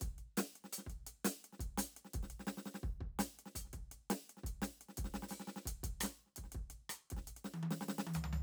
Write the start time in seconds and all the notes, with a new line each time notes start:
0.01 kick, closed hi-hat
0.18 closed hi-hat
0.37 closed hi-hat, snare
0.55 closed hi-hat
0.64 snare
0.72 closed hi-hat
0.78 snare
0.86 kick, closed hi-hat
1.07 closed hi-hat
1.24 closed hi-hat, snare
1.44 closed hi-hat
1.52 snare
1.59 kick, closed hi-hat
1.77 closed hi-hat, snare
1.96 closed hi-hat
2.05 snare
2.13 kick, closed hi-hat
2.23 snare
2.30 closed hi-hat
2.39 snare
2.47 snare
2.57 snare
2.66 snare
2.74 snare
2.83 kick
3.01 kick
3.19 closed hi-hat, snare
3.39 closed hi-hat
3.46 snare
3.55 closed hi-hat, kick
3.65 snare
3.73 kick, closed hi-hat
3.91 closed hi-hat
4.10 snare, closed hi-hat
4.29 closed hi-hat
4.37 snare
4.43 kick, closed hi-hat
4.62 snare, closed hi-hat
4.81 closed hi-hat
4.89 snare
4.97 kick, closed hi-hat
5.04 snare
5.14 snare
5.22 snare
5.28 snare, hi-hat pedal
5.40 snare
5.47 snare
5.56 snare
5.65 kick, closed hi-hat
5.83 kick, closed hi-hat
6.00 open hi-hat, cross-stick, snare
6.26 snare
6.36 kick, open hi-hat
6.44 snare
6.52 kick, open hi-hat
6.70 open hi-hat
6.89 open hi-hat, cross-stick
7.10 kick, open hi-hat
7.16 snare
7.27 open hi-hat
7.36 open hi-hat
7.44 snare
7.54 high tom
7.63 high tom
7.71 snare
7.81 snare, hi-hat pedal
7.88 snare
7.98 snare
8.07 high tom
8.14 hi-hat pedal, floor tom
8.24 floor tom
8.33 floor tom